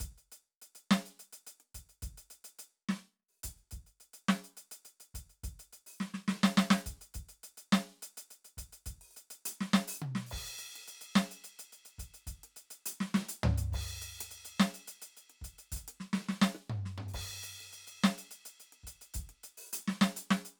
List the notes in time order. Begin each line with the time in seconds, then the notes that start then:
0.02 closed hi-hat, kick
0.07 kick
0.11 kick
0.18 closed hi-hat
0.32 closed hi-hat
0.62 closed hi-hat
0.75 closed hi-hat
0.91 snare
1.05 closed hi-hat
1.19 closed hi-hat
1.33 closed hi-hat
1.47 closed hi-hat
1.60 closed hi-hat
1.74 closed hi-hat, kick
1.89 closed hi-hat
2.02 closed hi-hat, kick
2.08 kick
2.17 closed hi-hat
2.30 closed hi-hat
2.44 closed hi-hat
2.59 closed hi-hat
2.89 snare
3.28 open hi-hat
3.43 closed hi-hat, kick
3.49 kick
3.57 closed hi-hat
3.71 closed hi-hat, kick
3.86 closed hi-hat
4.00 closed hi-hat
4.13 closed hi-hat
4.28 snare
4.44 closed hi-hat
4.57 closed hi-hat
4.71 closed hi-hat
4.85 closed hi-hat
5.00 closed hi-hat
5.14 closed hi-hat, kick
5.29 closed hi-hat
5.43 closed hi-hat, kick
5.52 kick
5.59 closed hi-hat
5.73 closed hi-hat
5.86 open hi-hat
6.00 snare
6.14 snare
6.28 snare
6.43 snare
6.57 snare
6.70 snare
6.78 hi-hat pedal
6.86 closed hi-hat, kick
7.01 closed hi-hat
7.14 closed hi-hat, kick
7.29 closed hi-hat
7.43 closed hi-hat
7.57 closed hi-hat
7.72 snare
8.02 closed hi-hat
8.17 closed hi-hat
8.30 closed hi-hat
8.44 closed hi-hat
8.57 closed hi-hat, kick
8.72 closed hi-hat
8.86 closed hi-hat, kick
8.91 kick
9.01 open hi-hat
9.11 open hi-hat
9.16 closed hi-hat
9.30 closed hi-hat
9.45 closed hi-hat
9.61 snare
9.73 snare
9.88 open hi-hat
10.02 high tom
10.15 snare
10.26 hi-hat pedal
10.30 kick, crash
10.46 closed hi-hat
10.58 closed hi-hat
10.75 closed hi-hat
10.88 closed hi-hat
11.01 closed hi-hat
11.15 snare
11.31 closed hi-hat
11.44 closed hi-hat
11.59 closed hi-hat
11.72 closed hi-hat
11.85 closed hi-hat
11.98 closed hi-hat, kick
12.14 closed hi-hat
12.27 closed hi-hat, kick
12.43 closed hi-hat
12.56 closed hi-hat
12.70 closed hi-hat
12.86 closed hi-hat
13.00 snare
13.14 snare
13.29 closed hi-hat
13.43 floor tom
13.58 closed hi-hat
13.72 kick, crash
13.78 kick
13.87 closed hi-hat
14.01 closed hi-hat
14.20 closed hi-hat
14.31 closed hi-hat
14.45 closed hi-hat
14.60 snare
14.74 closed hi-hat
14.87 closed hi-hat
15.02 closed hi-hat
15.17 closed hi-hat
15.30 closed hi-hat
15.41 closed hi-hat, kick
15.58 closed hi-hat
15.72 closed hi-hat, kick
15.76 closed hi-hat
15.88 closed hi-hat
16.00 snare
16.13 snare
16.29 snare
16.41 snare
16.55 cross-stick
16.70 mid tom
16.85 snare
16.98 mid tom
17.08 hi-hat pedal
17.14 kick, crash
17.23 kick
17.43 closed hi-hat
17.60 closed hi-hat
17.73 closed hi-hat
17.87 closed hi-hat
18.04 snare
18.18 closed hi-hat
18.31 closed hi-hat
18.45 closed hi-hat
18.60 closed hi-hat
18.72 closed hi-hat
18.83 closed hi-hat, kick
19.01 closed hi-hat
19.14 closed hi-hat, kick
19.21 kick
19.29 closed hi-hat
19.43 closed hi-hat
19.57 open hi-hat
19.67 hi-hat pedal
19.73 closed hi-hat
19.88 snare
20.01 snare
20.16 closed hi-hat
20.30 snare
20.45 closed hi-hat